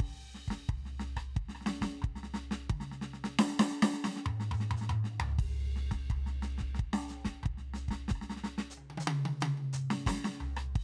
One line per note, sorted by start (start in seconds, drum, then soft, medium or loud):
0.01 kick soft
0.01 crash medium
0.34 snare soft
0.34 hi-hat pedal soft
0.48 kick soft
0.48 snare medium
0.70 kick soft
0.70 floor tom medium
0.86 snare soft
1.00 snare medium
1.17 kick soft
1.17 cross-stick medium
1.36 kick soft
1.36 snare soft
1.45 snare soft
1.49 snare medium
1.56 cross-stick medium
1.62 snare soft
1.67 snare medium
1.71 hi-hat pedal soft
1.82 kick soft
1.82 snare medium
2.03 kick soft
2.03 floor tom medium
2.16 snare soft
2.24 snare soft
2.35 snare medium
2.35 hi-hat pedal soft
2.52 snare medium
2.70 kick soft
2.70 high tom medium
2.81 snare medium
2.92 snare soft
3.02 snare medium
3.14 snare soft
3.25 snare medium
3.39 snare loud
3.49 snare soft
3.60 snare loud
3.71 snare soft
3.83 snare loud
3.94 snare soft
4.05 snare loud
4.17 snare soft
4.27 mid tom loud
4.41 snare soft
4.52 hi-hat pedal soft
4.52 mid tom loud
4.61 snare medium
4.71 mid tom loud
4.77 hi-hat pedal medium
4.82 snare soft
4.90 mid tom loud
5.05 snare soft
5.21 floor tom loud
5.39 kick medium
5.39 ride loud
5.77 snare soft
5.92 kick soft
5.92 snare medium
6.11 kick soft
6.11 floor tom loud
6.27 snare soft
6.43 snare soft
6.43 hi-hat pedal soft
6.59 kick soft
6.59 snare soft
6.75 snare soft
6.80 kick soft
6.94 snare loud
7.09 snare soft
7.09 hi-hat pedal medium
7.25 kick soft
7.25 snare medium
7.44 kick soft
7.44 floor tom medium
7.58 snare soft
7.74 snare soft
7.74 hi-hat pedal medium
7.89 kick soft
7.89 snare medium
8.09 kick soft
8.09 snare medium
8.09 hi-hat pedal medium
8.16 cross-stick soft
8.22 snare medium
8.30 snare medium
8.37 snare soft
8.37 hi-hat pedal soft
8.44 snare medium
8.59 snare medium
8.71 hi-hat pedal medium
8.78 high tom soft
8.91 high tom medium
8.98 hi-hat pedal medium
8.98 high tom medium
9.08 high tom loud
9.26 high tom loud
9.41 hi-hat pedal medium
9.41 high tom loud
9.58 high tom medium
9.74 hi-hat pedal loud
9.74 mid tom soft
9.91 snare medium
10.07 kick soft
10.07 snare loud
10.25 snare medium
10.41 floor tom medium
10.57 cross-stick medium
10.76 kick soft
10.76 crash medium